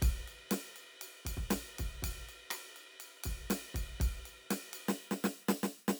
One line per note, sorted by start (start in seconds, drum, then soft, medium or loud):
0.02 kick medium
0.02 ride loud
0.28 ride medium
0.51 snare loud
0.51 ride loud
0.76 ride medium
1.01 ride loud
1.25 kick medium
1.25 ride loud
1.37 kick medium
1.50 snare loud
1.50 ride loud
1.78 kick medium
1.78 ride medium
2.02 kick medium
2.02 ride loud
2.29 ride medium
2.50 cross-stick medium
2.50 ride loud
2.76 ride medium
3.00 ride medium
3.24 kick medium
3.24 ride loud
3.50 snare loud
3.50 ride loud
3.74 kick medium
3.74 ride medium
4.00 kick medium
4.00 ride loud
4.25 ride medium
4.50 snare medium
4.50 ride loud
4.73 ride loud
4.88 snare loud
5.11 snare medium
5.24 snare loud
5.48 snare loud
5.63 snare medium
5.88 snare loud